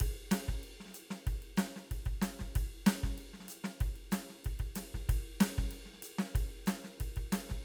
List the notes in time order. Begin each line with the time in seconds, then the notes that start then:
0.01 kick, ride
0.32 snare, hi-hat pedal, ride
0.49 kick, snare
0.64 ride
0.81 snare
0.86 snare
0.89 snare
0.95 hi-hat pedal, ride
1.11 snare
1.28 kick, ride
1.43 ride
1.58 snare, hi-hat pedal, ride
1.77 snare
1.92 kick, ride
2.07 kick, ride
2.22 snare, hi-hat pedal, ride
2.40 kick, snare
2.56 kick, ride
2.87 snare, hi-hat pedal, ride
3.04 kick, snare
3.16 snare, ride
3.34 snare
3.41 snare
3.43 snare
3.45 snare
3.46 snare, hi-hat pedal, ride
3.65 snare
3.81 kick, ride
3.97 ride
4.12 snare, hi-hat pedal, ride
4.30 snare
4.45 kick, ride
4.60 kick, ride
4.76 snare, hi-hat pedal, ride
4.95 kick, snare
5.10 kick, ride
5.41 snare, hi-hat pedal, ride
5.59 kick, snare
5.71 snare, hi-hat pedal, ride
5.86 snare
5.94 snare
5.97 snare
6.03 hi-hat pedal, ride
6.19 snare
6.36 kick, ride
6.51 ride
6.67 snare, hi-hat pedal, ride
6.85 snare
7.01 kick, ride
7.17 kick, ride
7.33 snare, hi-hat pedal, ride
7.50 kick, snare